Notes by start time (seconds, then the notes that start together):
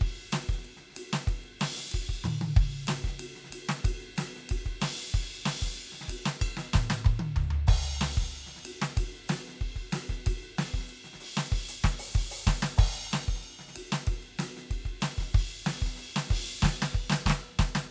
0.01 kick, ride
0.32 snare, hi-hat pedal, ride
0.49 kick, snare
0.58 snare
0.65 ride
0.77 snare
0.90 kick, snare
0.92 snare, hi-hat pedal
0.97 ride
1.13 snare
1.21 snare
1.27 kick, ride
1.44 ride
1.60 snare, hi-hat pedal, ride
1.77 snare
1.85 snare
1.90 snare, ride
1.94 kick, snare
2.09 kick
2.24 hi-hat pedal, mid tom, high tom
2.41 high tom
2.57 kick, ride
2.87 snare, hi-hat pedal, ride
3.04 kick, snare
3.20 ride
3.35 snare
3.45 snare
3.50 kick, hi-hat pedal, ride
3.69 snare
3.77 snare
3.85 kick, ride
4.01 ride
4.16 snare, hi-hat pedal, ride
4.36 snare
4.49 kick, ride
4.66 kick
4.81 snare, hi-hat pedal, ride
5.14 kick, ride
5.46 snare, hi-hat pedal, ride
5.62 kick, snare
5.78 ride
5.92 snare
6.01 snare
6.04 snare
6.08 kick, hi-hat pedal, ride
6.26 snare
6.41 kick, ride bell
6.57 snare
6.73 kick, snare, hi-hat pedal, mid tom
6.90 snare
7.05 kick, hi-hat pedal, mid tom
7.19 high tom
7.36 kick, floor tom, hi-hat pedal
7.51 floor tom
7.65 kick, crash
7.68 kick
8.00 snare, hi-hat pedal, ride
8.17 kick
8.22 snare
8.32 ride
8.47 snare
8.56 snare
8.63 kick, hi-hat pedal, ride
8.82 snare
8.97 kick, ride
9.12 ride
9.28 snare, hi-hat pedal, ride
9.47 snare
9.61 kick, ride
9.76 kick, ride
9.92 snare, hi-hat pedal, ride
10.09 kick, snare
10.26 kick, ride
10.58 snare, hi-hat pedal, ride
10.74 kick
10.78 snare
10.89 ride
11.04 snare
11.13 kick, snare
11.20 hi-hat pedal, ride
11.37 snare
11.52 kick, ride
11.69 closed hi-hat
11.84 kick, snare
11.99 open hi-hat
12.14 kick, ride
12.31 open hi-hat
12.47 kick, snare
12.63 snare
12.77 kick, crash
13.12 snare, hi-hat pedal, ride
13.28 kick
13.35 snare
13.42 hi-hat pedal, ride
13.59 snare
13.68 snare
13.74 kick, hi-hat pedal, ride
13.92 snare
14.07 kick, ride
14.23 ride
14.38 snare, hi-hat pedal, ride
14.57 snare
14.71 kick, ride
14.85 kick, ride
15.01 snare, hi-hat pedal, ride
15.18 kick, snare
15.34 kick, ride
15.66 snare, hi-hat pedal, ride
15.82 kick, snare
15.96 snare, hi-hat pedal, ride
16.16 snare
16.28 kick, snare, ride
16.62 kick, snare, hi-hat pedal
16.65 snare
16.82 snare
16.95 kick
17.10 snare
17.12 snare
17.26 kick, snare
17.30 snare
17.59 kick, snare
17.75 snare